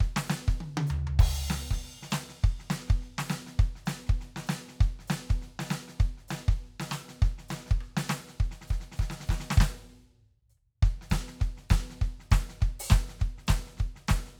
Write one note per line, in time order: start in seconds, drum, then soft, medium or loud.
0.01 kick medium
0.01 snare soft
0.17 snare loud
0.28 snare loud
0.28 hi-hat pedal medium
0.48 kick loud
0.48 snare soft
0.61 high tom medium
0.78 high tom loud
0.87 floor tom loud
0.87 hi-hat pedal medium
1.08 floor tom loud
1.15 kick soft
1.20 kick loud
1.20 crash loud
1.49 snare loud
1.49 hi-hat pedal medium
1.71 kick medium
1.71 snare medium
1.84 snare soft
2.03 snare medium
2.11 snare loud
2.11 hi-hat pedal medium
2.30 snare soft
2.44 kick loud
2.44 snare soft
2.60 snare soft
2.70 snare loud
2.70 hi-hat pedal medium
2.89 kick loud
2.89 snare soft
3.02 snare soft
3.19 snare loud
3.29 snare loud
3.29 hi-hat pedal medium
3.47 snare medium
3.60 kick loud
3.60 snare soft
3.76 snare soft
3.86 snare loud
3.86 hi-hat pedal medium
4.07 kick loud
4.07 snare soft
4.21 snare soft
4.37 snare medium
4.47 snare loud
4.47 hi-hat pedal medium
4.69 snare soft
4.81 kick loud
4.81 snare soft
4.99 kick soft
4.99 snare soft
5.08 snare loud
5.08 hi-hat pedal medium
5.29 kick medium
5.29 snare soft
5.42 snare soft
5.60 snare loud
5.69 snare loud
5.69 hi-hat pedal medium
5.88 snare soft
6.00 kick loud
6.00 snare soft
6.18 snare soft
6.29 snare loud
6.29 hi-hat pedal medium
6.49 kick loud
6.49 snare soft
6.64 snare soft
6.80 snare loud
6.89 snare loud
6.89 hi-hat pedal medium
7.09 snare medium
7.23 kick loud
7.23 snare soft
7.39 snare soft
7.49 snare loud
7.49 hi-hat pedal medium
7.67 snare soft
7.71 kick loud
7.81 cross-stick soft
7.97 snare loud
8.08 snare loud
8.08 hi-hat pedal medium
8.29 snare soft
8.41 kick medium
8.41 snare soft
8.52 snare soft
8.68 kick medium
8.68 hi-hat pedal medium
8.72 snare soft
8.81 snare soft
8.92 snare medium
8.97 kick medium
8.97 hi-hat pedal medium
9.01 snare medium
9.11 snare medium
9.21 snare medium
9.28 kick medium
9.28 snare medium
9.28 hi-hat pedal medium
9.40 snare medium
9.51 snare loud
9.56 kick loud
9.56 hi-hat pedal soft
9.61 snare loud
10.50 hi-hat pedal soft
10.58 kick soft
10.83 kick loud
10.83 snare soft
11.02 snare soft
11.10 kick medium
11.10 snare loud
11.10 hi-hat pedal medium
11.28 snare soft
11.41 kick medium
11.41 snare soft
11.58 snare soft
11.70 kick loud
11.70 snare loud
11.70 hi-hat pedal medium
11.90 snare soft
12.02 kick medium
12.02 snare soft
12.20 snare soft
12.31 kick loud
12.31 snare loud
12.31 hi-hat pedal medium
12.50 snare soft
12.61 kick loud
12.61 snare soft
12.80 open hi-hat loud
12.90 kick loud
12.90 snare loud
12.90 hi-hat pedal medium
13.09 snare soft
13.20 kick medium
13.20 snare soft
13.38 snare soft
13.47 kick loud
13.47 snare loud
13.47 hi-hat pedal medium
13.67 snare soft
13.78 kick medium
13.78 snare soft
13.96 snare soft
14.08 kick medium
14.08 snare loud
14.08 hi-hat pedal medium
14.27 snare soft